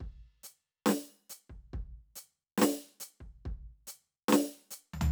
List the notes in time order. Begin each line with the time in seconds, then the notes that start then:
0.01 kick
0.44 hi-hat pedal
0.87 snare
0.90 snare
1.30 hi-hat pedal
1.50 kick
1.74 kick
2.16 hi-hat pedal
2.58 snare
2.62 snare
3.01 hi-hat pedal
3.21 kick
3.46 kick
3.88 hi-hat pedal
4.29 snare
4.33 snare
4.71 hi-hat pedal
4.94 floor tom
5.02 floor tom